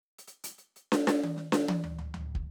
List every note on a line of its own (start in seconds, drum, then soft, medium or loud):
0.18 closed hi-hat medium
0.27 closed hi-hat medium
0.44 closed hi-hat loud
0.58 closed hi-hat soft
0.76 closed hi-hat soft
0.92 snare loud
1.07 snare loud
1.23 high tom loud
1.36 snare medium
1.52 snare loud
1.68 high tom loud
1.84 floor tom medium
1.98 floor tom medium
2.14 floor tom medium
2.35 kick medium